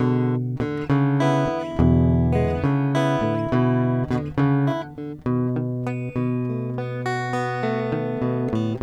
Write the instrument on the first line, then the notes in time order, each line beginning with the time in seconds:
acoustic guitar
0.00 B2 D3 G#3
0.62 D3
0.91 C#3 D3
1.21 B3 E4
1.50 D3
1.80 E2 B2 D3
2.33 G#3 B3
2.65 C#3 D3
2.96 B3 E4
3.23 A2 D3
3.53 B2 D3
4.10 B2 D3
4.39 C#3 D3
4.68 E4
4.99 D3
5.27 B2
5.57 D#3
5.87 B3
6.17 B2
6.51 A3
6.79 B3
7.07 F#4
7.34 B3
7.64 A3
7.93 D#3
8.23 B2
8.54 A2